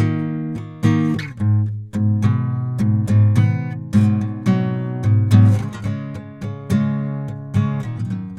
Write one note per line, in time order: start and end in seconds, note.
0.00 0.57 D#3
0.00 0.57 A#3
0.57 0.85 D#3
0.57 0.84 A#3
0.85 1.16 D#3
0.85 1.20 A#3
0.85 1.18 D#4
1.41 1.66 G#2
1.68 1.92 G#2
1.95 2.24 G#2
1.95 2.22 B2
2.24 2.80 G#2
2.24 2.81 B2
2.24 2.52 G#3
2.80 3.09 G#2
2.80 3.09 B2
2.80 3.07 C4
3.09 3.94 G#2
3.09 3.34 B2
3.09 3.94 D#3
3.09 3.34 C4
3.37 3.94 B2
3.37 3.81 B3
3.94 5.03 G#2
3.94 4.22 B2
3.94 4.47 F#3
4.23 4.46 B2
4.47 5.04 B2
4.47 5.05 F#3
4.47 5.05 C4
5.04 5.32 G#2
5.04 5.33 B2
5.32 5.63 G#2
5.32 5.72 B2
5.32 5.59 F#3
5.32 5.42 G3
5.64 5.81 G#3
5.85 6.16 C#3
5.85 6.46 G#3
5.85 6.44 C#4
6.17 6.41 C#3
6.43 6.71 C#3
6.72 7.29 C#3
6.72 7.55 G#3
6.72 7.57 C#4
7.29 7.54 C#3
7.56 7.81 C#3
7.56 7.84 G#3
7.56 7.81 C#4
7.82 7.98 A#2
7.98 8.39 F#2
7.98 8.25 A#2